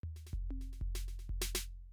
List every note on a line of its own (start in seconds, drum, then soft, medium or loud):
0.05 floor tom medium
0.16 snare soft
0.27 snare soft
0.33 kick soft
0.51 high tom medium
0.61 snare soft
0.73 snare soft
0.81 kick soft
0.95 snare medium
1.08 snare soft
1.19 snare soft
1.29 kick soft
1.42 snare medium
1.55 snare medium